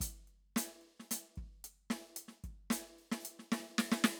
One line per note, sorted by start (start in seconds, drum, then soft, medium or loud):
0.01 closed hi-hat loud
0.01 kick soft
0.28 closed hi-hat soft
0.57 closed hi-hat loud
0.57 snare medium
0.82 closed hi-hat soft
1.00 snare soft
1.11 closed hi-hat loud
1.11 snare medium
1.36 kick soft
1.36 closed hi-hat soft
1.65 closed hi-hat medium
1.91 snare medium
2.17 closed hi-hat loud
2.29 snare soft
2.44 kick soft
2.44 closed hi-hat soft
2.71 closed hi-hat loud
2.71 snare medium
2.99 open hi-hat soft
3.12 snare medium
3.21 hi-hat pedal medium
3.25 closed hi-hat medium
3.40 snare soft
3.52 snare medium
3.60 snare soft
3.65 snare soft
3.70 snare soft
3.74 snare soft
3.79 snare loud
3.92 snare loud
4.04 snare loud